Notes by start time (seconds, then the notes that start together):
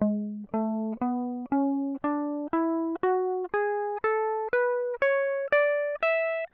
0.02 G#3
0.55 A3
1.02 B3
1.53 C#4
2.05 D4
2.54 E4
3.04 F#4
3.54 G#4
4.05 A4
4.54 B4
5.03 C#5
5.53 D5
6.03 E5